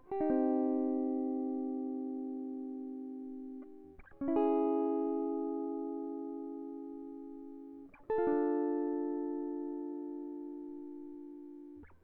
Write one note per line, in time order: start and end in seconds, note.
0.12 3.98 G4
0.21 3.93 D#4
0.31 3.96 C4
4.22 7.92 C#4
4.28 7.85 E4
4.37 7.88 G#4
8.10 11.46 A4
8.19 11.17 F4
8.28 11.87 D4